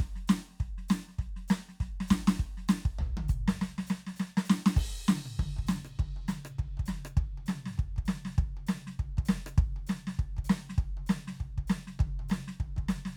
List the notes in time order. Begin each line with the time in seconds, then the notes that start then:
0.01 kick, snare
0.17 snare
0.29 snare, hi-hat pedal
0.52 snare
0.61 kick, snare
0.79 snare
0.90 snare, hi-hat pedal
1.09 snare
1.20 kick, snare
1.37 snare
1.49 snare, hi-hat pedal
1.56 kick
1.70 snare
1.81 kick, snare
2.01 snare
2.09 kick, snare, hi-hat pedal
2.29 snare
2.41 kick, snare
2.58 snare
2.69 snare, hi-hat pedal
2.86 kick
3.00 floor tom
3.18 high tom
3.30 kick, hi-hat pedal
3.49 snare
3.62 snare
3.79 snare
3.88 snare, hi-hat pedal
4.08 snare
4.17 snare, hi-hat pedal
4.38 snare
4.45 kick, hi-hat pedal
4.51 snare
4.67 snare
4.78 kick, crash
5.08 snare, hi-hat pedal, high tom
5.27 cross-stick
5.40 kick, high tom
5.58 kick, high tom
5.68 snare, hi-hat pedal, high tom
5.86 cross-stick
6.00 kick, high tom
6.17 high tom
6.29 snare, hi-hat pedal, high tom
6.46 cross-stick
6.60 kick, high tom
6.78 kick, high tom
6.87 snare, hi-hat pedal, high tom
7.06 cross-stick
7.18 kick, high tom
7.39 high tom
7.47 snare, hi-hat pedal, high tom
7.67 snare
7.79 kick, high tom
7.97 kick, high tom
8.06 snare, hi-hat pedal, high tom
8.26 snare
8.39 kick, high tom
8.58 high tom
8.68 snare, hi-hat pedal, high tom
8.88 snare
9.00 kick, high tom
9.18 kick, high tom
9.26 snare, hi-hat pedal
9.31 high tom
9.47 cross-stick
9.59 kick, high tom
9.77 high tom
9.88 snare, hi-hat pedal, high tom
10.08 snare
10.20 kick, high tom
10.38 kick, high tom
10.46 hi-hat pedal
10.51 snare, high tom
10.71 snare
10.79 kick, high tom
10.98 high tom
11.08 snare, hi-hat pedal, high tom
11.29 snare
11.41 kick, high tom
11.59 kick, high tom
11.68 snare, hi-hat pedal, high tom
11.88 snare
12.00 kick, high tom
12.20 high tom
12.30 snare, hi-hat pedal, high tom
12.49 snare
12.61 kick, high tom
12.78 kick, high tom
12.90 snare, hi-hat pedal, high tom
13.06 snare